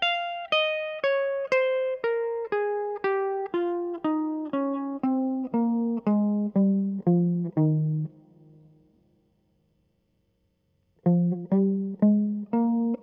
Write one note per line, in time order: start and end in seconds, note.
0.03 0.49 F5
0.53 1.03 D#5
1.04 1.50 C#5
1.53 1.99 C5
2.05 2.50 A#4
2.53 3.00 G#4
3.05 3.50 G4
3.55 4.01 F4
4.06 4.51 D#4
4.54 5.01 C#4
5.04 5.50 C4
5.55 6.02 A#3
6.08 6.52 G#3
6.57 7.04 G3
7.08 7.53 F3
7.59 8.08 D#3
11.07 11.36 F3
11.53 11.58 F#3
11.58 11.99 G3
12.04 12.48 G#3
12.54 12.99 A#3